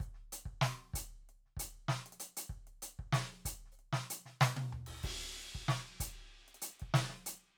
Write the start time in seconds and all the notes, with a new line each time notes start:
0.03 kick, closed hi-hat, hi-hat pedal
0.14 snare
0.32 closed hi-hat
0.46 kick
0.61 snare
0.94 closed hi-hat, kick
1.29 closed hi-hat
1.46 snare
1.57 closed hi-hat, kick
1.88 snare
2.06 closed hi-hat
2.12 closed hi-hat
2.20 closed hi-hat
2.37 closed hi-hat
2.49 kick, closed hi-hat
2.67 closed hi-hat
2.82 closed hi-hat
2.99 kick
3.13 snare
3.45 closed hi-hat, kick
3.65 snare
3.72 hi-hat pedal
3.79 closed hi-hat
3.93 snare
4.10 closed hi-hat
4.26 snare
4.40 snare, hi-hat pedal
4.57 high tom
4.73 floor tom
4.86 kick, crash
5.03 kick, ride
5.39 closed hi-hat
5.55 kick
5.68 snare
6.00 closed hi-hat, kick
6.48 closed hi-hat
6.54 closed hi-hat
6.62 closed hi-hat
6.80 kick, closed hi-hat
6.94 snare
7.09 snare
7.26 closed hi-hat
7.44 closed hi-hat